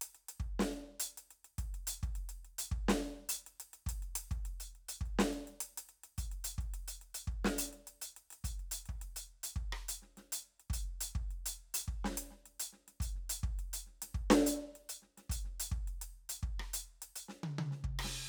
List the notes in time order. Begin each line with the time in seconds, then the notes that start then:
0.01 closed hi-hat
0.14 closed hi-hat
0.28 closed hi-hat
0.39 kick
0.45 closed hi-hat
0.59 snare
0.73 closed hi-hat
1.00 closed hi-hat
1.17 closed hi-hat
1.30 closed hi-hat
1.44 closed hi-hat
1.58 kick, closed hi-hat
1.74 closed hi-hat
1.87 closed hi-hat
2.02 kick, closed hi-hat
2.15 closed hi-hat
2.29 closed hi-hat
2.44 closed hi-hat
2.58 closed hi-hat
2.71 kick
2.88 snare
3.02 closed hi-hat
3.29 closed hi-hat
3.46 closed hi-hat
3.60 closed hi-hat
3.73 closed hi-hat
3.86 kick, closed hi-hat
4.02 closed hi-hat
4.15 closed hi-hat
4.31 kick, closed hi-hat
4.45 closed hi-hat
4.60 closed hi-hat
4.75 closed hi-hat
4.88 closed hi-hat
5.00 kick
5.05 closed hi-hat
5.18 snare
5.32 closed hi-hat
5.47 closed hi-hat
5.60 closed hi-hat
5.77 closed hi-hat
5.89 closed hi-hat
6.03 closed hi-hat
6.18 closed hi-hat, kick
6.31 closed hi-hat
6.44 closed hi-hat
6.58 kick, closed hi-hat
6.73 closed hi-hat
6.87 closed hi-hat
7.01 closed hi-hat
7.14 closed hi-hat
7.27 kick
7.31 closed hi-hat
7.44 snare
7.58 closed hi-hat
7.72 closed hi-hat
7.87 closed hi-hat
8.01 closed hi-hat
8.16 closed hi-hat
8.30 closed hi-hat
8.32 closed hi-hat
8.44 closed hi-hat, kick
8.59 closed hi-hat
8.71 closed hi-hat
8.85 kick, closed hi-hat
9.01 closed hi-hat
9.16 closed hi-hat
9.43 closed hi-hat
9.55 kick
9.72 cross-stick
9.88 closed hi-hat
10.02 snare
10.17 snare, closed hi-hat
10.32 closed hi-hat
10.59 closed hi-hat
10.70 closed hi-hat, kick
11.00 closed hi-hat
11.15 kick
11.30 closed hi-hat
11.45 closed hi-hat
11.74 closed hi-hat
11.87 kick
12.04 snare
12.10 snare
12.17 closed hi-hat
12.30 snare
12.45 snare, closed hi-hat
12.59 closed hi-hat
12.72 snare
12.87 snare, closed hi-hat
13.00 closed hi-hat, kick
13.15 snare
13.29 closed hi-hat
13.43 kick
13.59 closed hi-hat
13.73 closed hi-hat
13.86 snare
14.02 snare, closed hi-hat
14.14 kick
14.30 snare
14.37 snare
14.46 closed hi-hat
14.60 snare
14.75 closed hi-hat
14.89 closed hi-hat
15.02 snare
15.17 snare, closed hi-hat
15.29 closed hi-hat, kick
15.44 snare
15.60 closed hi-hat
15.71 kick
15.87 closed hi-hat
16.01 closed hi-hat
16.29 closed hi-hat
16.42 kick
16.59 cross-stick
16.73 closed hi-hat
17.02 closed hi-hat
17.15 closed hi-hat
17.28 snare
17.43 high tom
17.58 high tom
17.71 snare
17.84 kick
17.99 cross-stick, crash
18.04 snare